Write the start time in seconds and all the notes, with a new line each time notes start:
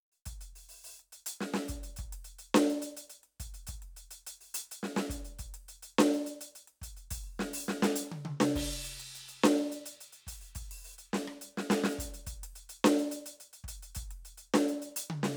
0.12 open hi-hat
0.25 closed hi-hat, kick
0.41 closed hi-hat
0.55 open hi-hat
0.69 open hi-hat
0.84 open hi-hat
0.99 closed hi-hat
1.12 closed hi-hat
1.26 closed hi-hat
1.40 snare
1.54 snare
1.63 hi-hat pedal
1.68 closed hi-hat, kick
1.83 closed hi-hat
1.96 closed hi-hat, kick
2.12 closed hi-hat
2.24 closed hi-hat
2.38 closed hi-hat
2.54 snare
2.69 closed hi-hat
2.82 closed hi-hat
2.97 closed hi-hat
3.09 closed hi-hat
3.23 closed hi-hat
3.40 closed hi-hat, kick
3.54 closed hi-hat
3.67 closed hi-hat, kick
3.82 closed hi-hat
3.96 closed hi-hat
4.11 closed hi-hat
4.27 closed hi-hat
4.40 open hi-hat
4.54 closed hi-hat
4.71 closed hi-hat
4.83 snare
4.96 snare
5.09 closed hi-hat, kick
5.24 closed hi-hat
5.39 closed hi-hat, kick
5.54 closed hi-hat
5.68 closed hi-hat
5.82 closed hi-hat
5.98 snare
6.13 closed hi-hat
6.26 closed hi-hat
6.41 closed hi-hat
6.55 closed hi-hat
6.67 closed hi-hat
6.81 closed hi-hat, kick
6.97 closed hi-hat
7.10 open hi-hat, kick
7.23 open hi-hat
7.39 snare
7.53 open hi-hat
7.68 snare
7.82 snare
7.96 closed hi-hat
8.12 high tom
8.25 high tom
8.40 snare
8.55 kick, crash
8.61 kick
8.64 kick
8.72 closed hi-hat
8.84 closed hi-hat, kick
8.99 closed hi-hat
9.15 closed hi-hat
9.28 closed hi-hat
9.43 snare
9.58 closed hi-hat
9.72 closed hi-hat
9.86 closed hi-hat
10.00 closed hi-hat
10.12 closed hi-hat
10.27 closed hi-hat, kick
10.32 open hi-hat
10.41 open hi-hat
10.55 open hi-hat, kick
10.71 open hi-hat
10.84 open hi-hat
10.98 closed hi-hat
11.13 snare
11.27 cross-stick
11.41 closed hi-hat
11.57 snare
11.70 snare
11.84 snare
11.89 hi-hat pedal
11.98 closed hi-hat, kick
12.04 kick
12.14 closed hi-hat
12.27 closed hi-hat, kick
12.43 closed hi-hat
12.55 closed hi-hat
12.69 closed hi-hat
12.84 snare
12.98 closed hi-hat
13.11 closed hi-hat
13.26 closed hi-hat
13.40 closed hi-hat
13.53 closed hi-hat
13.64 kick
13.68 closed hi-hat
13.82 closed hi-hat
13.95 closed hi-hat, kick
14.11 closed hi-hat
14.25 closed hi-hat
14.37 closed hi-hat
14.54 snare
14.68 closed hi-hat
14.82 closed hi-hat
14.96 closed hi-hat
15.10 high tom
15.23 snare
15.33 hi-hat pedal